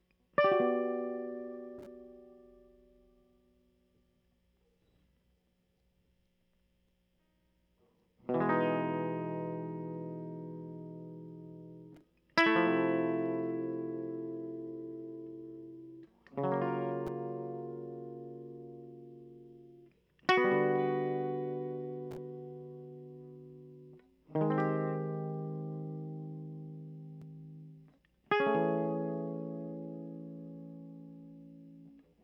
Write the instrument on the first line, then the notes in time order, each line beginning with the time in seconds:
electric guitar
0.38 D5
0.45 G4
0.52 F#4
0.60 B3
8.30 B2
8.35 E3
8.41 G#3
8.49 D#4
12.38 E4
12.47 A3
12.56 F3
12.68 C3
16.39 C#3
16.44 F#3
16.52 A#3
16.62 F4
20.29 F#4
20.38 B3
20.45 G3
20.53 D3
24.36 D#3
24.42 G#3
24.51 C4
24.58 G4
28.32 G#4
28.40 C#4
28.47 A3
28.56 E3